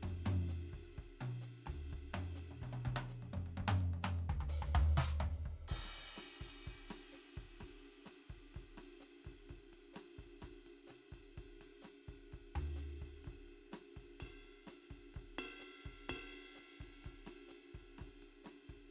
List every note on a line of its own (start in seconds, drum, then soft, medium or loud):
0.01 kick soft
0.01 hi-hat pedal soft
0.01 mid tom medium
0.01 ride medium
0.10 kick soft
0.26 mid tom loud
0.26 ride medium
0.49 hi-hat pedal medium
0.49 ride soft
0.73 kick soft
0.73 ride soft
0.79 kick soft
0.94 kick soft
0.94 hi-hat pedal soft
0.94 ride soft
1.04 kick soft
1.21 high tom medium
1.21 ride medium
1.41 hi-hat pedal medium
1.41 ride soft
1.66 kick soft
1.66 floor tom medium
1.66 ride medium
1.73 kick soft
1.92 kick soft
1.92 ride soft
1.98 kick soft
2.14 mid tom medium
2.14 ride medium
2.35 hi-hat pedal medium
2.39 ride soft
2.51 high tom soft
2.62 kick soft
2.62 high tom medium
2.67 kick soft
2.73 high tom medium
2.85 kick soft
2.85 high tom medium
2.96 high tom loud
3.09 hi-hat pedal medium
3.22 mid tom soft
3.33 kick soft
3.33 mid tom medium
3.42 kick soft
3.42 mid tom soft
3.57 kick soft
3.57 mid tom medium
3.68 mid tom loud
3.80 mid tom soft
3.93 mid tom soft
4.03 hi-hat pedal loud
4.03 mid tom loud
4.19 mid tom soft
4.29 kick soft
4.29 floor tom loud
4.41 floor tom medium
4.49 kick soft
4.49 hi-hat pedal loud
4.62 floor tom medium
4.74 kick soft
4.74 floor tom loud
4.97 kick soft
4.97 snare medium
5.04 kick soft
5.20 kick soft
5.20 mid tom medium
5.28 kick soft
5.45 kick soft
5.52 kick soft
5.68 kick medium
5.68 crash medium
5.77 kick soft
5.83 cross-stick soft
5.85 cross-stick soft
5.98 snare soft
6.16 cross-stick soft
6.16 snare soft
6.16 hi-hat pedal medium
6.16 ride medium
6.41 kick soft
6.41 ride soft
6.46 kick soft
6.67 kick soft
6.67 ride soft
6.73 kick soft
6.90 cross-stick medium
6.90 snare soft
6.90 ride medium
7.12 hi-hat pedal medium
7.12 ride soft
7.37 kick soft
7.37 ride soft
7.43 kick soft
7.60 kick soft
7.60 cross-stick soft
7.60 hi-hat pedal soft
7.60 ride medium
7.68 kick soft
8.05 cross-stick soft
8.05 hi-hat pedal medium
8.05 ride medium
8.30 kick soft
8.30 ride soft
8.35 kick soft
8.53 kick soft
8.53 hi-hat pedal soft
8.53 ride soft
8.61 kick soft
8.77 cross-stick soft
8.77 ride medium
9.00 hi-hat pedal medium
9.00 ride soft
9.25 kick soft
9.25 ride soft
9.32 kick soft
9.48 kick soft
9.48 hi-hat pedal soft
9.48 ride soft
9.55 kick soft
9.73 ride soft
9.93 cross-stick soft
9.93 hi-hat pedal medium
9.93 ride medium
10.18 kick soft
10.18 ride soft
10.24 kick soft
10.40 kick soft
10.40 cross-stick soft
10.40 snare soft
10.40 hi-hat pedal soft
10.40 ride medium
10.48 kick soft
10.66 ride soft
10.87 snare soft
10.87 hi-hat pedal medium
10.87 ride medium
11.12 kick soft
11.12 ride soft
11.17 kick soft
11.35 kick soft
11.35 hi-hat pedal soft
11.35 ride medium
11.43 kick soft
11.61 snare soft
11.61 ride medium
11.82 cross-stick soft
11.82 hi-hat pedal medium
11.82 ride medium
12.08 kick soft
12.08 ride soft
12.13 kick soft
12.32 kick soft
12.32 ride soft
12.39 kick soft
12.55 floor tom medium
12.55 ride medium
12.76 hi-hat pedal medium
12.76 ride soft
13.02 kick soft
13.02 ride soft
13.07 kick soft
13.25 kick soft
13.25 ride medium
13.33 kick soft
13.49 ride soft
13.72 cross-stick soft
13.72 snare soft
13.72 hi-hat pedal medium
13.72 ride medium
13.96 kick soft
13.96 ride soft
14.02 kick soft
14.20 kick soft
14.20 ride bell medium
14.27 kick soft
14.45 ride soft
14.67 cross-stick soft
14.67 hi-hat pedal medium
14.67 ride medium
14.90 kick soft
14.90 ride soft
14.96 kick soft
15.14 kick soft
15.14 hi-hat pedal soft
15.14 ride soft
15.22 kick soft
15.38 snare soft
15.38 ride bell loud
15.60 hi-hat pedal medium
15.60 ride soft
15.85 kick soft
15.85 ride soft
15.91 kick soft
16.09 kick soft
16.09 cross-stick soft
16.09 snare soft
16.09 ride bell loud
16.16 kick soft
16.34 ride soft
16.55 hi-hat pedal medium
16.55 ride soft
16.80 kick soft
16.80 ride medium
16.85 kick soft
17.04 kick soft
17.04 ride medium
17.11 kick soft
17.26 cross-stick soft
17.26 snare soft
17.26 ride medium
17.48 hi-hat pedal medium
17.48 ride soft
17.74 kick soft
17.74 ride soft
17.80 kick soft
17.98 kick soft
17.98 cross-stick soft
17.98 ride medium
18.06 kick soft
18.22 ride soft
18.44 cross-stick soft
18.44 snare soft
18.44 hi-hat pedal medium
18.44 ride medium
18.69 kick soft
18.69 ride soft
18.74 kick soft